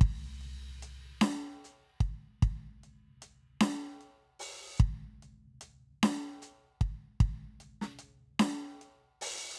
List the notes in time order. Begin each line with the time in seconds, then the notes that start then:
0.01 kick, crash
0.41 closed hi-hat
0.83 closed hi-hat
1.21 closed hi-hat, snare
1.64 closed hi-hat
2.00 kick, closed hi-hat
2.43 kick, closed hi-hat
2.83 closed hi-hat
3.20 snare, closed hi-hat
3.61 closed hi-hat, snare
4.01 closed hi-hat
4.40 open hi-hat
4.79 kick, closed hi-hat, hi-hat pedal
5.23 closed hi-hat
5.61 closed hi-hat
6.03 snare, closed hi-hat
6.42 closed hi-hat
6.81 kick, closed hi-hat
7.20 kick, closed hi-hat
7.60 closed hi-hat
7.82 snare
7.99 closed hi-hat
8.39 closed hi-hat, snare
8.55 snare
8.81 closed hi-hat
9.21 open hi-hat